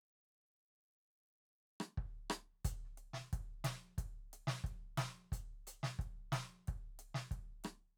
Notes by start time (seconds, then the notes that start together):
1.80 cross-stick
1.97 kick
2.30 cross-stick
2.65 closed hi-hat, kick
2.84 snare
2.97 closed hi-hat
3.13 snare
3.33 kick, closed hi-hat
3.64 snare, closed hi-hat
3.72 kick
3.98 kick, closed hi-hat
4.33 closed hi-hat
4.47 snare
4.64 kick, closed hi-hat
4.97 snare, closed hi-hat
5.32 closed hi-hat, kick
5.67 closed hi-hat
5.83 snare
5.99 kick, closed hi-hat
6.32 snare, closed hi-hat
6.43 kick
6.67 kick, closed hi-hat
6.99 closed hi-hat
7.14 snare
7.31 kick, closed hi-hat
7.64 cross-stick, closed hi-hat